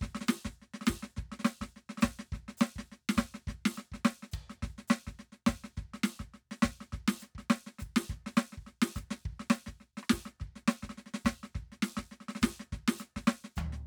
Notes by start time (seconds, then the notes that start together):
0.01 kick, snare
0.07 kick
0.11 kick, snare
0.21 snare
0.28 snare, hi-hat pedal
0.45 kick, snare
0.62 snare
0.74 snare
0.81 snare
0.86 kick, snare, hi-hat pedal
0.95 kick
1.03 snare
1.16 kick, snare
1.24 kick
1.32 snare
1.39 snare
1.44 snare, hi-hat pedal
1.61 kick, snare
1.76 snare
1.89 snare
1.97 snare, hi-hat pedal
2.02 kick, snare
2.12 kick
2.19 snare
2.32 kick, snare
2.38 kick
2.48 snare
2.57 snare, hi-hat pedal
2.76 kick, snare
2.92 snare
3.09 snare
3.17 kick, snare, hi-hat pedal
3.23 kick
3.34 snare
3.47 kick, snare
3.54 kick
3.65 snare
3.73 hi-hat pedal
3.77 snare
3.92 kick, snare
4.05 snare
4.22 snare
4.31 kick, hi-hat pedal, floor tom
4.40 kick
4.42 kick
4.50 snare
4.62 kick, snare
4.69 kick
4.78 snare
4.88 snare, hi-hat pedal
5.07 kick, snare
5.19 snare
5.32 snare
5.46 kick, snare, hi-hat pedal
5.54 kick
5.64 snare
5.77 kick, snare
5.83 kick
5.94 snare
6.03 snare, hi-hat pedal
6.19 kick, snare
6.34 snare
6.51 snare
6.62 kick, snare, hi-hat pedal
6.80 snare
6.92 kick, snare
7.00 kick
7.08 snare
7.19 snare, hi-hat pedal
7.35 kick, snare
7.50 snare
7.66 snare
7.78 kick, snare, hi-hat pedal
7.96 snare
8.09 kick, snare
8.16 kick
8.26 snare
8.37 snare, hi-hat pedal
8.52 snare
8.57 kick
8.66 snare
8.81 snare
8.95 kick, snare, hi-hat pedal
9.02 kick
9.10 snare
9.25 kick
9.32 kick
9.39 snare
9.50 snare, hi-hat pedal
9.66 kick, snare
9.80 snare
9.97 snare
10.03 cross-stick
10.09 kick, snare, hi-hat pedal
10.25 snare
10.40 kick, snare
10.47 kick
10.56 snare
10.68 snare, hi-hat pedal
10.82 kick, snare
10.89 snare
10.97 snare
11.06 snare
11.14 snare
11.25 kick, snare, hi-hat pedal
11.30 kick
11.43 snare
11.55 kick, snare
11.62 kick
11.72 snare
11.82 snare, hi-hat pedal
11.97 kick, snare
12.11 snare
12.20 snare
12.28 snare
12.35 snare
12.41 kick, snare, hi-hat pedal
12.59 snare
12.72 kick, snare
12.79 kick
12.88 snare
12.98 snare, hi-hat pedal
13.16 kick, snare
13.27 snare
13.44 snare
13.56 kick, floor tom, hi-hat pedal
13.66 kick
13.72 snare